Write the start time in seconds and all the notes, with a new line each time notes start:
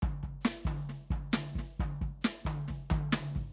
0.02 kick, mid tom
0.23 kick, mid tom
0.41 snare, hi-hat pedal
0.65 kick, mid tom
0.89 snare
1.10 kick, mid tom
1.31 snare, hi-hat pedal, mid tom
1.55 kick, snare
1.80 kick, mid tom
2.01 kick, mid tom
2.21 snare, hi-hat pedal
2.45 kick, mid tom
2.68 kick, snare
2.90 kick, mid tom
3.11 snare, hi-hat pedal, mid tom
3.35 kick, floor tom